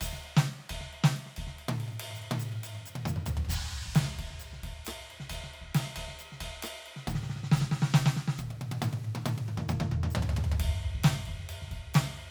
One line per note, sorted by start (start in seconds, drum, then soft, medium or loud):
0.01 kick medium
0.01 ride bell loud
0.01 percussion loud
0.09 kick soft
0.09 snare soft
0.13 kick soft
0.24 ride soft
0.37 snare loud
0.59 snare soft
0.70 kick soft
0.70 ride bell loud
0.77 kick soft
0.77 snare soft
0.93 ride soft
1.04 snare loud
1.16 ride medium
1.26 snare soft
1.37 kick soft
1.37 ride bell medium
1.45 kick soft
1.45 snare soft
1.59 ride medium
1.69 high tom loud
1.80 ride medium
1.88 high tom soft
1.88 percussion soft
2.00 ride loud
2.11 high tom medium
2.15 percussion medium
2.22 ride soft
2.31 high tom loud
2.40 ride soft
2.40 percussion medium
2.52 high tom soft
2.64 ride medium
2.64 percussion medium
2.75 high tom soft
2.86 percussion medium
2.95 high tom loud
3.06 mid tom loud
3.06 percussion medium
3.16 mid tom medium
3.26 floor tom loud
3.26 percussion medium
3.37 floor tom medium
3.45 kick medium
3.45 floor tom soft
3.50 percussion loud
3.50 crash loud
3.64 kick soft
3.86 kick soft
3.91 kick soft
3.95 snare loud
3.95 ride loud
3.95 percussion medium
4.19 kick soft
4.19 ride medium
4.25 kick soft
4.31 snare soft
4.40 ride soft
4.40 percussion medium
4.53 snare soft
4.63 kick soft
4.63 ride medium
4.70 kick soft
4.85 cross-stick medium
4.85 ride loud
4.85 percussion medium
5.10 ride medium
5.20 snare soft
5.30 kick soft
5.30 ride bell loud
5.30 percussion medium
5.37 kick soft
5.44 snare soft
5.54 ride soft
5.62 kick soft
5.75 snare loud
5.75 ride loud
5.75 percussion medium
5.96 kick soft
5.96 ride bell loud
6.03 kick soft
6.08 snare soft
6.19 ride soft
6.19 percussion medium
6.32 snare soft
6.41 kick soft
6.41 ride bell loud
6.47 kick soft
6.63 cross-stick medium
6.63 ride loud
6.63 percussion medium
6.86 ride medium
6.96 snare soft
7.07 kick soft
7.07 high tom loud
7.07 percussion medium
7.15 kick soft
7.15 snare medium
7.23 snare soft
7.30 snare medium
7.36 snare soft
7.43 snare medium
7.52 kick soft
7.52 snare loud
7.56 percussion medium
7.61 snare medium
7.82 snare loud
7.94 kick soft
7.94 snare loud
7.94 percussion soft
8.06 snare loud
8.17 snare medium
8.28 snare medium
8.38 kick soft
8.38 high tom loud
8.38 percussion medium
8.50 high tom medium
8.61 high tom medium
8.72 high tom loud
8.82 high tom loud
8.82 percussion medium
8.93 high tom medium
9.05 high tom soft
9.15 high tom medium
9.23 kick soft
9.23 high tom loud
9.23 percussion medium
9.38 high tom medium
9.47 kick soft
9.47 mid tom medium
9.58 mid tom loud
9.69 kick soft
9.69 mid tom loud
9.69 percussion medium
9.80 mid tom loud
9.91 kick soft
9.91 mid tom medium
10.03 mid tom loud
10.10 percussion medium
10.15 floor tom loud
10.23 floor tom loud
10.29 floor tom medium
10.37 floor tom loud
10.44 floor tom medium
10.52 floor tom medium
10.60 kick medium
10.60 ride loud
10.60 percussion soft
10.78 kick soft
10.95 kick soft
11.02 kick soft
11.02 snare loud
11.02 ride loud
11.06 percussion medium
11.26 kick soft
11.26 ride medium
11.34 kick soft
11.40 snare soft
11.49 ride medium
11.49 percussion medium
11.62 snare soft
11.68 kick soft
11.68 snare soft
11.68 ride medium
11.78 kick soft
11.94 snare loud
11.94 ride loud
11.94 percussion medium
12.20 ride soft